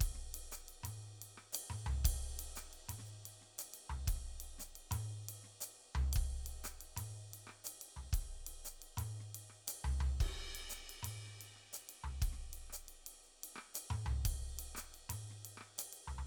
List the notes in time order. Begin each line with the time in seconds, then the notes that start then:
0.01 kick, ride
0.15 snare
0.35 ride
0.52 cross-stick, snare, hi-hat pedal
0.69 ride
0.84 mid tom, ride
1.07 snare
1.22 ride
1.37 cross-stick, snare
1.53 hi-hat pedal, ride
1.70 mid tom
1.87 floor tom
2.05 kick, snare, ride
2.40 ride
2.56 cross-stick, snare, hi-hat pedal
2.73 ride
2.89 mid tom, ride
2.99 snare
3.05 hi-hat pedal
3.26 ride
3.42 snare
3.59 hi-hat pedal, ride
3.74 ride
3.90 floor tom
4.08 kick, ride
4.16 snare
4.40 ride
4.59 snare, hi-hat pedal
4.76 ride
4.91 mid tom, ride
5.29 ride
5.44 snare
5.49 ride
5.61 hi-hat pedal, ride
5.95 floor tom
6.13 kick, ride
6.47 ride
6.64 cross-stick, hi-hat pedal
6.81 ride
6.97 mid tom, ride
7.12 snare
7.34 ride
7.47 cross-stick
7.50 cross-stick
7.65 hi-hat pedal, ride
7.82 ride
7.97 floor tom
8.13 kick, ride
8.22 snare
8.47 ride
8.64 snare, hi-hat pedal
8.82 ride
8.98 mid tom, ride
9.20 snare
9.35 ride
9.50 cross-stick
9.68 hi-hat pedal, ride
9.85 floor tom
10.01 floor tom
10.21 kick, ride
10.42 snare
10.55 ride
10.70 cross-stick, snare, hi-hat pedal
10.90 ride
11.03 mid tom, ride
11.27 snare
11.31 snare
11.41 ride
11.56 cross-stick
11.73 hi-hat pedal, ride
11.89 ride
12.04 floor tom
12.22 kick, ride
12.32 snare
12.53 ride
12.70 cross-stick, hi-hat pedal
12.89 ride
13.07 ride
13.23 hi-hat pedal
13.44 ride
13.56 cross-stick
13.58 cross-stick
13.75 hi-hat pedal, ride
13.91 mid tom
14.06 floor tom
14.25 kick, ride
14.59 ride
14.75 cross-stick, hi-hat pedal
14.78 cross-stick
14.94 ride
15.10 mid tom, ride
15.30 snare
15.45 ride
15.58 cross-stick
15.61 cross-stick
15.78 hi-hat pedal, ride
15.93 ride
16.08 floor tom
16.19 floor tom